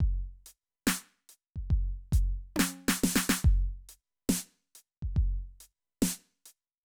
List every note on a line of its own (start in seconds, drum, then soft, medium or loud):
0.01 kick medium
0.01 crash soft
0.47 closed hi-hat medium
0.88 snare loud
1.30 closed hi-hat medium
1.56 kick soft
1.71 kick medium
1.71 crash soft
1.71 ride soft
2.13 closed hi-hat medium
2.13 kick medium
2.57 snare loud
2.57 high tom loud
2.89 snare loud
2.89 hi-hat pedal soft
3.04 snare loud
3.16 snare loud
3.30 snare loud
3.45 kick loud
3.45 snare soft
3.89 closed hi-hat medium
4.30 snare loud
4.76 closed hi-hat medium
5.03 kick soft
5.17 kick medium
5.17 crash soft
5.17 ride soft
5.61 closed hi-hat medium
6.03 snare loud
6.46 closed hi-hat medium